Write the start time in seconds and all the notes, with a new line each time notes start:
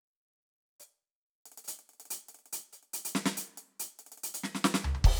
0.80 hi-hat pedal
1.46 closed hi-hat
1.52 closed hi-hat
1.58 closed hi-hat
1.64 closed hi-hat
1.68 closed hi-hat
1.79 closed hi-hat
1.89 closed hi-hat
1.93 closed hi-hat
2.00 closed hi-hat
2.05 closed hi-hat
2.10 closed hi-hat
2.29 closed hi-hat
2.35 closed hi-hat
2.39 closed hi-hat
2.46 closed hi-hat
2.53 closed hi-hat
2.73 closed hi-hat
2.83 closed hi-hat
2.93 closed hi-hat
3.05 closed hi-hat
3.15 snare
3.26 snare
3.37 closed hi-hat
3.57 closed hi-hat
3.80 closed hi-hat
3.99 closed hi-hat
4.06 closed hi-hat
4.12 closed hi-hat
4.17 closed hi-hat
4.23 closed hi-hat
4.34 closed hi-hat
4.44 snare
4.55 snare
4.64 snare
4.74 snare
4.84 floor tom
4.95 floor tom
5.04 kick, crash